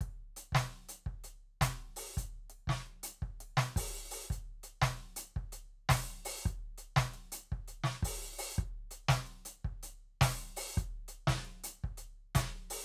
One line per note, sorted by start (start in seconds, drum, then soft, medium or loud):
0.03 kick medium
0.03 closed hi-hat medium
0.36 closed hi-hat medium
0.52 kick medium
0.52 snare loud
0.70 closed hi-hat soft
0.89 closed hi-hat loud
1.06 kick medium
1.24 closed hi-hat medium
1.61 closed hi-hat loud
1.61 kick medium
1.61 snare loud
1.96 open hi-hat loud
2.14 closed hi-hat medium
2.14 kick medium
2.14 hi-hat pedal soft
2.50 closed hi-hat medium
2.67 kick medium
2.67 snare loud
2.86 closed hi-hat soft
3.03 closed hi-hat loud
3.22 kick medium
3.40 closed hi-hat medium
3.57 snare loud
3.76 open hi-hat loud
3.76 kick medium
4.11 open hi-hat loud
4.25 hi-hat pedal soft
4.30 closed hi-hat medium
4.30 kick medium
4.63 closed hi-hat medium
4.82 kick medium
4.82 snare loud
4.97 closed hi-hat soft
5.16 closed hi-hat loud
5.36 kick medium
5.52 closed hi-hat medium
5.89 open hi-hat loud
5.89 kick medium
5.89 snare loud
6.25 open hi-hat loud
6.42 kick medium
6.42 hi-hat pedal soft
6.47 closed hi-hat medium
6.78 closed hi-hat medium
6.96 kick medium
6.96 snare loud
7.14 closed hi-hat medium
7.32 closed hi-hat loud
7.52 kick medium
7.68 closed hi-hat medium
7.84 snare loud
8.03 open hi-hat loud
8.03 kick medium
8.38 open hi-hat loud
8.55 kick medium
8.55 hi-hat pedal soft
8.91 closed hi-hat medium
9.08 kick medium
9.08 snare loud
9.26 closed hi-hat soft
9.45 closed hi-hat loud
9.65 kick medium
9.83 closed hi-hat medium
10.21 open hi-hat loud
10.21 kick medium
10.21 snare loud
10.56 open hi-hat loud
10.75 closed hi-hat medium
10.75 kick medium
10.75 hi-hat pedal soft
11.08 closed hi-hat medium
11.27 kick medium
11.27 snare loud
11.45 closed hi-hat soft
11.64 closed hi-hat loud
11.84 kick medium
11.97 closed hi-hat medium
12.35 closed hi-hat loud
12.35 kick medium
12.35 snare loud
12.70 open hi-hat loud